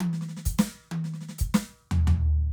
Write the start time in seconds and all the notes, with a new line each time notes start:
0.01 high tom
0.13 snare
0.21 snare
0.29 snare
0.37 snare
0.46 closed hi-hat, kick
0.59 snare, hi-hat pedal
0.92 high tom
1.05 snare
1.14 snare
1.21 snare
1.29 snare
1.39 closed hi-hat, kick
1.54 snare, hi-hat pedal
1.91 floor tom
2.08 floor tom